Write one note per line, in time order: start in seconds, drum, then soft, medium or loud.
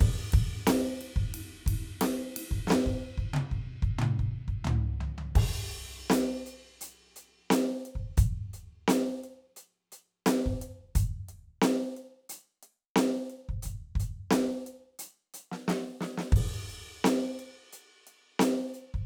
0.01 kick loud
0.01 crash medium
0.33 kick loud
0.33 ride medium
0.67 snare loud
0.67 ride loud
1.01 ride medium
1.16 kick medium
1.16 snare soft
1.35 ride loud
1.67 kick loud
1.67 ride loud
2.02 snare loud
2.02 ride loud
2.37 ride loud
2.52 kick medium
2.68 snare loud
2.71 snare loud
2.87 kick medium
3.18 kick medium
3.18 snare soft
3.34 high tom loud
3.37 high tom loud
3.52 kick medium
3.83 kick loud
3.83 snare soft
3.99 mid tom loud
3.99 high tom loud
4.20 kick medium
4.48 kick medium
4.65 floor tom loud
4.65 mid tom loud
5.01 floor tom medium
5.18 floor tom medium
5.36 kick loud
5.36 crash loud
5.68 open hi-hat soft
6.10 closed hi-hat loud
6.10 snare loud
6.47 closed hi-hat medium
6.81 closed hi-hat loud
7.16 closed hi-hat medium
7.51 closed hi-hat loud
7.51 snare loud
7.86 closed hi-hat medium
7.96 kick medium
8.18 closed hi-hat loud
8.18 kick loud
8.54 closed hi-hat medium
8.88 closed hi-hat loud
8.88 snare loud
9.24 closed hi-hat soft
9.57 closed hi-hat medium
9.92 closed hi-hat medium
10.27 closed hi-hat loud
10.27 snare loud
10.46 kick medium
10.62 closed hi-hat medium
10.96 closed hi-hat loud
10.96 kick loud
11.29 closed hi-hat medium
11.62 closed hi-hat loud
11.62 snare loud
11.97 closed hi-hat soft
12.30 closed hi-hat loud
12.63 closed hi-hat medium
12.96 closed hi-hat loud
12.96 snare loud
13.30 closed hi-hat soft
13.49 kick medium
13.63 closed hi-hat loud
13.63 kick medium
13.96 kick medium
13.96 snare soft
14.00 closed hi-hat medium
14.31 closed hi-hat loud
14.31 snare loud
14.67 closed hi-hat medium
14.99 closed hi-hat loud
15.34 closed hi-hat loud
15.52 snare medium
15.68 snare loud
16.01 snare loud
16.18 snare loud
16.33 kick loud
16.33 snare soft
16.33 crash medium
16.69 closed hi-hat medium
17.05 closed hi-hat medium
17.05 snare loud
17.40 closed hi-hat soft
17.73 closed hi-hat medium
18.07 closed hi-hat medium
18.40 closed hi-hat loud
18.40 snare loud
18.74 closed hi-hat soft
18.94 kick medium